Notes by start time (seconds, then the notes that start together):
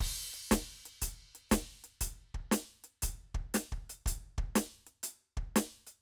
0.01 kick, crash
0.34 closed hi-hat
0.51 closed hi-hat, kick, snare
0.86 closed hi-hat
1.02 closed hi-hat, kick
1.35 closed hi-hat
1.50 closed hi-hat, kick, snare, hi-hat pedal
1.84 closed hi-hat
2.01 closed hi-hat, kick
2.35 kick
2.52 closed hi-hat, snare
2.84 closed hi-hat
3.03 closed hi-hat, kick
3.35 kick
3.54 closed hi-hat, snare
3.72 kick
3.90 closed hi-hat
4.06 closed hi-hat, kick
4.38 kick
4.56 closed hi-hat, snare
4.87 closed hi-hat
5.03 closed hi-hat
5.37 kick
5.56 closed hi-hat, snare
5.87 closed hi-hat